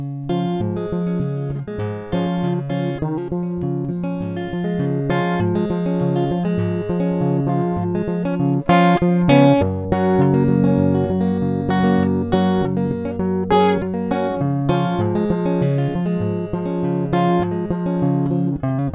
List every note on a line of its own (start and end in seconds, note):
0.01 0.21 C#3
0.30 0.89 F3
0.30 0.65 C#4
0.30 0.66 F4
0.62 0.96 G#2
0.78 1.53 G#3
0.94 1.32 F3
1.08 1.64 C#4
1.21 1.67 C#3
1.51 1.63 F3
1.69 2.28 G#3
1.81 2.30 G#2
2.13 2.65 F3
2.13 2.50 C#4
2.13 2.59 F4
2.45 2.97 C#3
2.71 2.94 F3
2.71 3.02 C#4
2.71 3.01 F4
3.03 3.19 D#3
3.18 3.29 F3
3.18 3.34 C#4
3.34 3.90 F3
3.44 3.70 C#4
3.63 3.95 C#3
3.91 4.50 F3
4.05 4.59 C#4
4.23 4.55 G#2
4.38 4.90 F4
4.55 5.02 F3
4.66 5.42 G#3
4.81 5.27 C#3
5.11 5.67 F3
5.11 5.46 C#4
5.11 5.47 F4
5.41 5.75 G#2
5.57 6.34 G#3
5.71 6.28 F3
5.87 6.43 C#4
6.01 6.35 C#3
6.17 6.48 F4
6.33 6.85 F3
6.46 7.84 G#3
6.59 6.93 G#2
6.91 7.43 F3
7.01 7.40 C#4
7.23 7.68 C#3
7.48 8.05 F3
7.48 7.80 C#4
7.48 7.90 F4
7.78 8.06 G#2
7.96 8.26 G#3
8.09 8.63 F3
8.24 8.38 C#3
8.24 8.38 C#4
8.41 8.69 C#3
8.70 8.99 F3
8.70 9.00 C#4
8.70 9.00 F4
9.03 9.58 F3
9.10 9.25 C#4
9.30 9.57 C#3
9.30 9.56 B3
9.30 9.68 C#4
9.62 10.76 F#2
9.76 9.87 F#3
9.93 10.47 F#3
9.93 10.24 C#4
9.93 10.41 F#4
10.21 11.39 C#3
10.35 11.12 A#3
10.50 11.07 F#3
10.65 11.15 C#4
10.79 12.00 F#2
10.96 11.44 F#4
11.12 11.70 F#3
11.22 11.85 A#3
11.43 12.53 C#3
11.70 12.27 F#3
11.70 12.11 C#4
11.70 12.12 F#4
11.85 12.68 A#3
12.00 12.32 F#2
12.33 12.67 F#3
12.33 12.72 C#4
12.33 12.70 F#4
12.63 12.95 C#3
12.63 12.89 F#3
12.78 13.85 A#3
13.06 13.19 D4
13.21 13.47 F#3
13.51 13.79 F#3
13.51 13.90 C#4
13.51 13.82 G#4
13.84 14.31 F#3
13.95 14.29 A#3
14.12 14.47 C#4
14.12 14.51 F#4
14.29 14.80 G#3
14.39 14.92 C#3
14.39 14.64 E3
14.70 15.28 F3
14.70 15.06 C#4
14.70 15.05 F4
15.01 15.37 G#2
15.16 15.97 G#3
15.32 15.69 F3
15.47 15.98 C#4
15.63 15.91 C#3
15.79 16.08 F4
15.97 16.49 F3
16.07 17.45 G#3
16.23 16.74 G#2
16.55 17.08 F3
16.67 17.10 C#4
16.86 17.33 C#3
17.14 17.68 F3
17.14 17.48 C#4
17.14 17.53 F4
17.43 17.75 G#2
17.53 18.29 G#3
17.72 18.38 F3
17.87 18.27 C#4
18.04 18.59 C#3
18.38 18.53 F3
18.65 18.80 C3
18.80 18.92 C#3